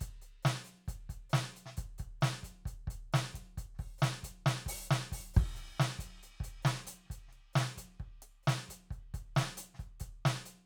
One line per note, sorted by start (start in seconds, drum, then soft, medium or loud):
0.01 closed hi-hat medium
0.01 kick medium
0.22 closed hi-hat soft
0.43 snare loud
0.43 hi-hat pedal soft
0.65 closed hi-hat soft
0.65 hi-hat pedal medium
0.85 closed hi-hat medium
0.85 kick medium
0.85 hi-hat pedal soft
1.10 closed hi-hat soft
1.10 kick soft
1.30 snare loud
1.30 hi-hat pedal medium
1.56 closed hi-hat soft
1.66 snare soft
1.77 closed hi-hat medium
1.77 kick medium
1.99 closed hi-hat soft
1.99 kick medium
2.21 snare loud
2.21 hi-hat pedal soft
2.44 closed hi-hat medium
2.44 kick soft
2.66 closed hi-hat medium
2.66 kick medium
2.88 closed hi-hat medium
2.88 kick medium
3.13 snare loud
3.13 hi-hat pedal medium
3.35 kick soft
3.35 closed hi-hat medium
3.58 closed hi-hat medium
3.58 kick medium
3.75 snare soft
3.79 open hi-hat soft
3.79 kick medium
3.99 snare loud
3.99 hi-hat pedal medium
4.24 closed hi-hat medium
4.24 kick soft
4.46 snare loud
4.66 open hi-hat loud
4.66 kick medium
4.87 hi-hat pedal medium
4.91 snare loud
5.12 open hi-hat medium
5.12 kick medium
5.34 kick loud
5.34 hi-hat pedal medium
5.34 crash medium
5.54 closed hi-hat soft
5.54 snare soft
5.80 snare loud
5.99 closed hi-hat medium
5.99 kick soft
6.23 closed hi-hat soft
6.41 closed hi-hat medium
6.41 kick medium
6.41 snare soft
6.63 snare loud
6.63 hi-hat pedal soft
6.86 closed hi-hat loud
6.86 kick soft
7.06 snare soft
7.10 closed hi-hat medium
7.10 kick soft
7.29 snare soft
7.33 closed hi-hat soft
7.54 snare loud
7.54 hi-hat pedal soft
7.61 snare medium
7.78 closed hi-hat medium
7.78 kick soft
8.00 kick soft
8.00 closed hi-hat soft
8.22 closed hi-hat medium
8.43 hi-hat pedal soft
8.48 snare loud
8.69 closed hi-hat medium
8.69 kick soft
8.91 closed hi-hat soft
8.91 kick medium
9.14 closed hi-hat medium
9.14 kick medium
9.36 snare loud
9.36 hi-hat pedal soft
9.42 snare medium
9.58 closed hi-hat loud
9.74 snare soft
9.80 closed hi-hat soft
9.80 kick soft
10.00 closed hi-hat medium
10.00 kick medium
10.26 snare loud
10.46 closed hi-hat medium